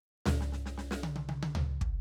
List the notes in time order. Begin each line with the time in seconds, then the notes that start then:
0.26 snare, floor tom
0.41 snare
0.52 snare
0.66 snare
0.78 snare
0.91 snare
1.03 high tom
1.16 high tom
1.29 high tom
1.43 high tom
1.55 floor tom
1.81 kick